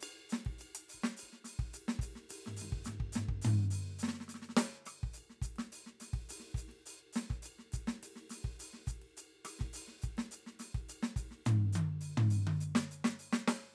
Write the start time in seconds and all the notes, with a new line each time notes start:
0.01 hi-hat pedal, ride bell
0.30 snare, hi-hat pedal, ride
0.45 kick, ride
0.59 hi-hat pedal, ride bell
0.75 closed hi-hat
0.89 hi-hat pedal, ride bell
0.95 kick
1.03 snare, ride
1.17 hi-hat pedal, ride bell
1.23 kick
1.33 snare
1.45 snare, hi-hat pedal, ride
1.59 kick, ride
1.68 kick
1.74 hi-hat pedal, ride
1.89 snare
1.99 kick, hi-hat pedal
2.04 ride
2.16 snare
2.30 hi-hat pedal, ride
2.47 snare, floor tom
2.57 hi-hat pedal
2.62 floor tom
2.73 kick
2.85 snare, floor tom, hi-hat pedal
3.00 kick
3.13 snare, floor tom, hi-hat pedal
3.29 kick
3.42 floor tom, hi-hat pedal
3.71 hi-hat pedal
3.99 hi-hat pedal
4.03 snare
4.08 snare
4.14 snare
4.21 snare
4.28 snare, hi-hat pedal
4.35 snare
4.42 snare
4.49 snare
4.57 snare, hi-hat pedal
4.86 cross-stick, hi-hat pedal
5.04 kick
5.14 hi-hat pedal
5.18 ride bell
5.30 snare
5.42 kick, hi-hat pedal, ride
5.56 snare, ride
5.72 hi-hat pedal, ride bell
5.87 snare
6.00 snare, hi-hat pedal, ride
6.14 kick, ride
6.29 hi-hat pedal, ride
6.40 snare
6.55 kick, hi-hat pedal, ride
6.68 snare, ride
6.86 hi-hat pedal, ride bell
7.13 snare, hi-hat pedal, ride
7.30 kick, snare
7.43 hi-hat pedal, ride bell
7.59 snare
7.73 kick, hi-hat pedal, ride
7.88 snare, ride
8.03 hi-hat pedal, ride
8.16 snare
8.30 snare, hi-hat pedal, ride
8.45 kick, ride
8.60 hi-hat pedal, ride bell
8.74 snare
8.87 kick, hi-hat pedal, ride
9.02 ride
9.17 hi-hat pedal, ride bell
9.45 cross-stick, hi-hat pedal, ride
9.59 kick, snare
9.74 hi-hat pedal, ride bell
9.88 snare
10.02 kick, hi-hat pedal, ride
10.18 snare, ride
10.32 hi-hat pedal, ride bell
10.47 snare
10.60 snare, hi-hat pedal, ride
10.75 kick, ride
10.89 hi-hat pedal, ride bell
11.03 snare
11.17 kick, hi-hat pedal, ride
11.31 snare
11.46 floor tom, hi-hat pedal
11.73 hi-hat pedal, high tom
11.77 closed hi-hat
12.01 hi-hat pedal
12.18 floor tom
12.31 hi-hat pedal
12.47 high tom
12.61 hi-hat pedal
12.75 snare
12.92 hi-hat pedal
13.05 snare
13.20 hi-hat pedal
13.33 snare
13.48 snare, hi-hat pedal